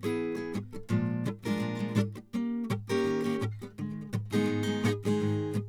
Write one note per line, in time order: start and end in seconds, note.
0.05 0.52 E3
0.05 0.39 B3
0.05 0.36 E4
0.05 0.36 G#4
0.36 0.61 B3
0.36 0.61 E4
0.36 0.56 G#4
0.54 0.62 E3
0.89 1.30 A#2
0.89 1.32 F3
0.89 1.33 G#3
0.89 1.34 D4
1.44 1.61 G#3
1.44 1.78 D4
1.44 1.76 F4
1.44 1.98 A#4
1.49 1.60 F3
1.59 2.01 A#2
1.59 1.79 F3
1.59 1.80 G#3
1.76 1.95 D4
1.76 1.93 F4
1.81 2.04 F3
1.81 2.05 G#3
1.97 2.06 D4
1.97 2.10 A4
2.34 2.76 A#3
2.34 2.67 C#4
2.90 3.06 A#3
2.90 3.08 C#4
2.90 3.23 G4
2.90 3.21 A#4
3.05 3.27 D#3
3.05 3.27 A#3
3.05 3.26 C#4
3.21 3.49 G4
3.21 3.40 A#4
3.26 3.49 D#3
3.26 3.38 A#3
3.26 3.51 C#4
3.79 3.94 G#3
4.32 4.67 G#3
4.32 4.64 B3
4.32 4.63 D#4
4.32 4.84 G#4
4.36 4.47 G#2
4.36 4.43 D3
4.47 4.94 G#2
4.64 4.85 B3
4.64 4.84 D#4
4.68 4.96 D#3
4.68 4.84 G#3
4.84 4.96 G#3
4.84 4.96 B3
4.84 4.98 D#4
4.84 4.98 G#4
5.04 5.62 D#4
5.04 5.63 G#4
5.08 5.21 G#2
5.08 5.21 D#3
5.08 5.65 G#3
5.22 5.62 G#2
5.22 5.65 D#3